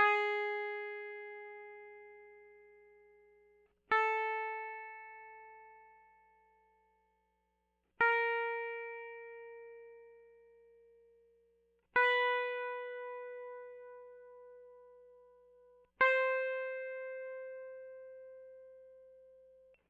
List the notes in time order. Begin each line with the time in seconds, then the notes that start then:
0.00 G#4
3.92 A4
8.01 A#4
11.96 B4
16.01 C5